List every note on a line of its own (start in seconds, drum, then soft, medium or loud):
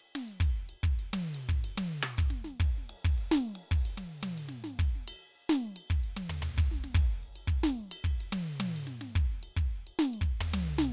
0.01 hi-hat pedal medium
0.01 ride soft
0.16 snare medium
0.25 hi-hat pedal soft
0.25 ride bell soft
0.41 kick medium
0.41 ride bell medium
0.55 hi-hat pedal medium
0.70 ride bell medium
0.80 kick medium
0.80 hi-hat pedal soft
1.00 ride bell soft
1.10 hi-hat pedal medium
1.14 high tom loud
1.35 ride bell medium
1.50 kick medium
1.65 hi-hat pedal medium
1.65 ride bell medium
1.78 high tom loud
1.91 hi-hat pedal soft
2.03 cross-stick loud
2.03 ride soft
2.18 kick medium
2.18 hi-hat pedal medium
2.18 ride bell medium
2.31 snare soft
2.45 snare soft
2.45 ride soft
2.60 kick medium
2.60 ride loud
2.77 snare soft
2.77 hi-hat pedal medium
2.90 ride loud
3.01 kick medium
3.01 hi-hat pedal soft
3.19 ride medium
3.32 snare loud
3.32 hi-hat pedal medium
3.56 hi-hat pedal soft
3.56 ride loud
3.72 kick medium
3.86 hi-hat pedal medium
3.86 ride bell medium
3.98 high tom medium
4.13 hi-hat pedal soft
4.22 high tom loud
4.22 ride soft
4.38 hi-hat pedal medium
4.38 ride bell medium
4.49 snare soft
4.65 snare medium
4.65 ride soft
4.80 kick medium
4.80 ride bell medium
4.95 snare soft
4.95 hi-hat pedal medium
5.08 ride bell loud
5.18 hi-hat pedal soft
5.36 ride soft
5.49 snare loud
5.49 hi-hat pedal medium
5.77 ride bell medium
5.91 kick medium
6.04 hi-hat pedal medium
6.04 ride bell soft
6.17 high tom loud
6.30 floor tom loud
6.30 hi-hat pedal soft
6.43 floor tom loud
6.57 kick medium
6.57 hi-hat pedal medium
6.57 ride soft
6.72 snare soft
6.85 snare soft
6.85 hi-hat pedal soft
6.95 kick medium
6.95 ride loud
7.14 hi-hat pedal medium
7.24 ride medium
7.36 ride bell medium
7.48 kick medium
7.64 snare loud
7.64 hi-hat pedal medium
7.91 hi-hat pedal soft
7.91 ride bell loud
8.05 kick medium
8.21 hi-hat pedal medium
8.21 ride bell medium
8.33 high tom loud
8.45 hi-hat pedal soft
8.61 high tom loud
8.75 hi-hat pedal medium
8.75 ride bell medium
8.88 snare soft
9.02 snare medium
9.02 ride soft
9.16 kick medium
9.16 ride medium
9.28 hi-hat pedal medium
9.32 snare soft
9.44 ride bell medium
9.52 hi-hat pedal soft
9.57 kick medium
9.72 ride soft
9.82 hi-hat pedal medium
9.87 ride bell medium
10.00 snare loud
10.14 ride bell medium
10.22 kick medium
10.37 hi-hat pedal medium
10.41 floor tom loud
10.54 high tom loud
10.79 snare loud